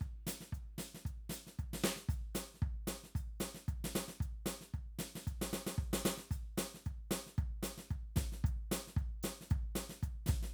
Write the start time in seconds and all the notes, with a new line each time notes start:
0.01 kick, closed hi-hat
0.27 closed hi-hat, snare
0.41 snare
0.53 kick, closed hi-hat
0.78 closed hi-hat, snare
0.95 snare
1.05 kick, closed hi-hat
1.29 closed hi-hat, snare
1.47 snare
1.59 kick, closed hi-hat
1.73 snare
1.84 snare
1.96 snare
2.09 closed hi-hat, kick
2.35 closed hi-hat, snare
2.54 snare
2.62 kick, closed hi-hat
2.87 snare, closed hi-hat
3.04 snare
3.15 closed hi-hat, kick
3.40 snare, closed hi-hat
3.55 snare
3.68 kick, closed hi-hat
3.84 snare
3.95 snare
4.08 snare
4.20 kick, closed hi-hat
4.46 closed hi-hat, snare
4.61 snare
4.74 kick, closed hi-hat
4.99 snare, closed hi-hat
5.15 snare
5.27 kick, closed hi-hat
5.41 snare
5.53 snare
5.67 snare
5.78 kick
5.93 snare
6.05 snare
6.18 snare
6.31 closed hi-hat, kick
6.57 closed hi-hat, snare
6.74 snare
6.86 kick, closed hi-hat
7.11 snare, closed hi-hat
7.27 snare
7.38 kick, closed hi-hat
7.63 closed hi-hat, snare
7.78 snare
7.91 kick, closed hi-hat
8.16 kick, snare, closed hi-hat
8.32 snare
8.44 kick, closed hi-hat
8.71 closed hi-hat, snare
8.87 snare
8.97 kick, closed hi-hat
9.23 snare, closed hi-hat
9.41 snare
9.50 kick, closed hi-hat
9.75 snare, closed hi-hat
9.89 snare
10.03 kick, closed hi-hat
10.26 kick, snare, closed hi-hat
10.43 snare